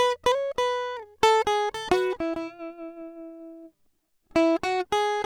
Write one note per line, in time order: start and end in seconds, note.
0.00 0.20 B4
0.27 0.54 C#5
0.59 1.01 B4
1.24 1.45 A4
1.48 1.72 G#4
1.75 1.91 A4
1.75 1.92 A4
1.92 2.16 F#4
1.92 2.19 B4
2.21 2.35 E4
2.38 2.52 E4
4.37 4.60 E4
4.64 4.87 F#4
4.93 5.25 G#4